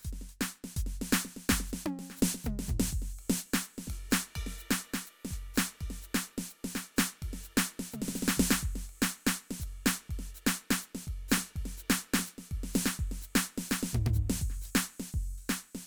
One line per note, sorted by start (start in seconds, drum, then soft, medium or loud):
0.01 hi-hat pedal medium
0.05 closed hi-hat medium
0.05 kick soft
0.13 snare soft
0.22 snare soft
0.30 closed hi-hat soft
0.42 snare medium
0.46 hi-hat pedal soft
0.54 closed hi-hat soft
0.65 snare soft
0.77 closed hi-hat loud
0.77 kick medium
0.84 kick soft
0.84 snare soft
0.87 kick soft
1.02 snare medium
1.13 snare loud
1.18 hi-hat pedal medium
1.26 snare soft
1.37 snare soft
1.49 kick soft
1.49 snare loud
1.49 hi-hat pedal soft
1.57 kick soft
1.57 snare soft
1.67 hi-hat pedal medium
1.74 snare medium
1.87 high tom loud
2.00 snare soft
2.11 snare soft
2.17 hi-hat pedal medium
2.23 snare loud
2.35 snare soft
2.44 kick soft
2.44 hi-hat pedal medium
2.44 mid tom loud
2.54 kick soft
2.60 snare medium
2.67 kick soft
2.67 floor tom medium
2.67 hi-hat pedal medium
2.76 kick soft
2.78 kick soft
2.78 snare loud
2.86 hi-hat pedal medium
2.93 kick soft
2.93 crash medium
3.01 kick soft
3.01 snare soft
3.20 ride medium
3.30 snare loud
3.38 hi-hat pedal medium
3.43 ride soft
3.54 snare loud
3.63 hi-hat pedal medium
3.67 ride medium
3.79 snare medium
3.88 kick soft
3.88 snare soft
3.88 ride loud
4.11 snare loud
4.11 hi-hat pedal medium
4.11 ride loud
4.36 kick soft
4.36 ride bell loud
4.45 kick soft
4.45 snare soft
4.58 hi-hat pedal medium
4.58 ride soft
4.71 snare loud
4.86 ride medium
4.94 snare medium
5.05 hi-hat pedal medium
5.05 ride medium
5.25 snare medium
5.32 kick soft
5.32 ride medium
5.55 snare loud
5.55 hi-hat pedal medium
5.55 ride loud
5.81 kick soft
5.81 ride bell medium
5.87 kick soft
5.87 snare soft
6.02 hi-hat pedal medium
6.02 ride soft
6.15 snare loud
6.28 ride soft
6.39 snare medium
6.49 hi-hat pedal medium
6.49 ride medium
6.65 snare medium
6.76 snare medium
6.76 ride loud
6.97 snare loud
6.97 hi-hat pedal medium
6.97 ride medium
7.23 kick soft
7.23 ride loud
7.28 kick soft
7.31 kick soft
7.31 snare soft
7.43 hi-hat pedal medium
7.47 ride soft
7.58 snare loud
7.70 ride medium
7.80 snare medium
7.92 hi-hat pedal medium
7.92 mid tom medium
8.03 snare medium
8.09 snare medium
8.15 snare medium
8.15 hi-hat pedal loud
8.23 snare medium
8.29 snare loud
8.38 kick soft
8.38 snare loud
8.44 kick soft
8.51 snare loud
8.63 kick soft
8.63 crash medium
8.70 kick soft
8.76 snare soft
8.90 ride medium
9.03 snare loud
9.07 hi-hat pedal medium
9.16 ride soft
9.27 snare loud
9.40 ride soft
9.51 snare medium
9.60 kick soft
9.60 hi-hat pedal loud
9.60 ride medium
9.68 kick soft
9.87 snare loud
9.87 hi-hat pedal medium
9.87 ride medium
10.10 kick soft
10.10 ride medium
10.20 snare soft
10.35 hi-hat pedal medium
10.35 ride soft
10.47 snare loud
10.61 ride soft
10.71 snare loud
10.81 hi-hat pedal medium
10.81 ride soft
10.96 snare medium
11.08 kick soft
11.08 ride medium
11.29 snare loud
11.29 hi-hat pedal loud
11.29 ride loud
11.38 snare soft
11.56 kick soft
11.56 ride medium
11.62 kick soft
11.62 snare soft
11.78 hi-hat pedal loud
11.78 ride soft
11.91 snare loud
12.04 ride soft
12.14 snare loud
12.20 snare medium
12.26 hi-hat pedal medium
12.26 ride medium
12.39 snare soft
12.52 kick soft
12.52 ride medium
12.58 kick soft
12.64 snare soft
12.74 snare loud
12.74 hi-hat pedal loud
12.86 snare loud
13.00 kick medium
13.00 crash medium
13.10 kick soft
13.10 snare soft
13.22 hi-hat pedal loud
13.22 ride medium
13.36 snare loud
13.48 ride medium
13.58 snare medium
13.69 snare loud
13.69 hi-hat pedal loud
13.84 snare medium
13.94 kick soft
13.94 floor tom loud
14.07 floor tom loud
14.14 kick soft
14.14 hi-hat pedal medium
14.30 snare medium
14.42 kick medium
14.42 crash medium
14.51 kick soft
14.51 snare soft
14.62 hi-hat pedal medium
14.66 closed hi-hat medium
14.76 snare loud
14.90 closed hi-hat soft
15.00 snare medium
15.12 kick medium
15.12 hi-hat pedal soft
15.12 crash medium
15.17 snare soft
15.22 kick soft
15.38 open hi-hat soft
15.50 snare medium
15.63 open hi-hat soft
15.76 snare medium